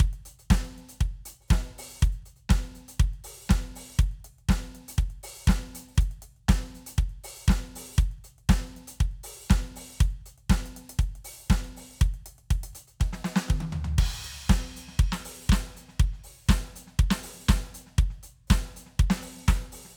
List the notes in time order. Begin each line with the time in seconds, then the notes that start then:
0.01 kick, closed hi-hat
0.14 closed hi-hat
0.26 closed hi-hat
0.40 closed hi-hat
0.51 kick, snare
0.66 closed hi-hat
0.79 closed hi-hat
0.90 closed hi-hat
1.02 kick, closed hi-hat
1.26 closed hi-hat
1.41 open hi-hat
1.49 kick, snare, hi-hat pedal
1.65 closed hi-hat
1.71 kick
1.79 open hi-hat
1.92 open hi-hat
2.00 kick, hi-hat pedal
2.04 closed hi-hat
2.13 closed hi-hat
2.23 closed hi-hat, kick
2.37 closed hi-hat
2.50 kick, snare
2.63 closed hi-hat
2.76 closed hi-hat
2.89 closed hi-hat
3.01 kick, closed hi-hat
3.14 closed hi-hat
3.25 open hi-hat
3.48 kick, snare, hi-hat pedal
3.63 closed hi-hat
3.77 open hi-hat
3.91 open hi-hat
3.97 kick, closed hi-hat, hi-hat pedal
4.12 closed hi-hat
4.21 kick
4.25 closed hi-hat
4.39 closed hi-hat
4.50 kick, snare
4.64 closed hi-hat
4.76 closed hi-hat
4.89 closed hi-hat
4.99 kick, closed hi-hat
5.11 closed hi-hat
5.24 open hi-hat
5.45 kick, hi-hat pedal
5.50 snare
5.61 closed hi-hat
5.66 kick
5.76 open hi-hat
5.90 open hi-hat
5.96 kick, hi-hat pedal
6.02 closed hi-hat
6.12 closed hi-hat
6.23 closed hi-hat
6.37 closed hi-hat
6.49 kick, snare
6.63 closed hi-hat
6.76 closed hi-hat
6.87 closed hi-hat
6.99 kick, closed hi-hat
7.10 closed hi-hat
7.25 open hi-hat
7.40 open hi-hat
7.45 kick, hi-hat pedal
7.50 snare
7.62 closed hi-hat
7.76 open hi-hat
7.91 open hi-hat
7.98 kick, closed hi-hat, hi-hat pedal
8.12 closed hi-hat
8.19 kick
8.25 closed hi-hat
8.39 closed hi-hat
8.50 kick, snare
8.64 closed hi-hat
8.77 closed hi-hat
8.88 closed hi-hat
9.01 kick, closed hi-hat
9.12 closed hi-hat
9.24 open hi-hat
9.38 open hi-hat
9.50 kick, snare, hi-hat pedal
9.77 open hi-hat
9.91 open hi-hat
9.99 kick, closed hi-hat, hi-hat pedal
10.11 closed hi-hat
10.22 kick
10.27 closed hi-hat
10.39 closed hi-hat
10.51 kick, snare
10.67 closed hi-hat
10.77 closed hi-hat
10.90 closed hi-hat
11.00 kick, closed hi-hat
11.16 closed hi-hat
11.26 open hi-hat
11.41 open hi-hat
11.47 kick, snare, hi-hat pedal
11.65 closed hi-hat
11.78 open hi-hat
11.92 open hi-hat
11.99 kick, hi-hat pedal
12.03 closed hi-hat
12.15 closed hi-hat
12.27 closed hi-hat
12.39 closed hi-hat
12.51 kick, closed hi-hat
12.64 closed hi-hat
12.74 closed hi-hat, kick
12.88 closed hi-hat
13.01 kick, snare
13.14 snare
13.25 snare
13.37 snare
13.49 kick, high tom
13.61 high tom
13.73 floor tom
13.85 floor tom
13.99 kick, crash
14.25 closed hi-hat
14.48 kick, snare, hi-hat pedal
14.58 snare
14.77 closed hi-hat
14.89 snare
15.00 kick, closed hi-hat
15.13 snare
15.21 snare
15.26 open hi-hat
15.47 kick, hi-hat pedal
15.53 snare, closed hi-hat
15.78 closed hi-hat
15.89 snare
16.01 kick, closed hi-hat
16.14 snare
16.25 open hi-hat
16.46 kick, hi-hat pedal
16.50 closed hi-hat, snare
16.67 snare
16.77 closed hi-hat
16.88 snare
17.00 kick, closed hi-hat
17.11 snare
17.24 open hi-hat
17.46 kick, snare, hi-hat pedal
17.52 closed hi-hat
17.56 snare
17.65 snare
17.68 snare
17.75 closed hi-hat
17.87 snare
17.92 snare
17.99 closed hi-hat, kick
18.11 snare
18.24 open hi-hat
18.48 kick, snare, hi-hat pedal
18.53 closed hi-hat
18.77 closed hi-hat
18.87 snare
19.00 kick, closed hi-hat
19.11 snare
19.18 snare
19.23 open hi-hat
19.46 kick, snare, closed hi-hat, hi-hat pedal
19.56 snare
19.68 snare
19.73 open hi-hat
19.86 snare
19.88 snare
19.90 snare, hi-hat pedal